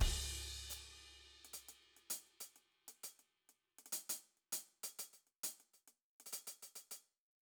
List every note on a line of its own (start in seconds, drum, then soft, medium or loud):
0.01 kick medium
0.01 crash medium
0.71 hi-hat pedal medium
1.20 closed hi-hat soft
1.40 closed hi-hat soft
1.45 closed hi-hat soft
1.54 closed hi-hat medium
1.69 closed hi-hat medium
1.83 closed hi-hat soft
1.97 closed hi-hat soft
2.11 closed hi-hat loud
2.27 closed hi-hat soft
2.41 closed hi-hat medium
2.56 closed hi-hat soft
2.73 closed hi-hat soft
2.89 closed hi-hat medium
3.04 closed hi-hat medium
3.20 closed hi-hat soft
3.50 closed hi-hat soft
3.79 closed hi-hat soft
3.87 closed hi-hat soft
3.93 closed hi-hat loud
4.10 closed hi-hat loud
4.25 closed hi-hat soft
4.38 closed hi-hat soft
4.53 closed hi-hat loud
4.69 closed hi-hat soft
4.84 closed hi-hat medium
5.00 closed hi-hat medium
5.14 closed hi-hat soft
5.28 closed hi-hat soft
5.44 closed hi-hat loud
5.61 closed hi-hat soft
5.74 closed hi-hat soft
5.88 closed hi-hat soft
6.21 closed hi-hat soft
6.27 closed hi-hat soft
6.33 closed hi-hat medium
6.48 closed hi-hat medium
6.63 closed hi-hat soft
6.76 closed hi-hat medium
6.92 closed hi-hat medium